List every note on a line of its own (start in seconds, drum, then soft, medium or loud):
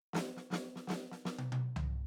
0.13 snare medium
0.15 snare medium
0.37 snare soft
0.50 snare soft
0.53 snare medium
0.76 snare soft
0.87 snare medium
0.90 snare medium
1.12 snare soft
1.25 snare medium
1.39 high tom medium
1.52 high tom medium
1.76 floor tom medium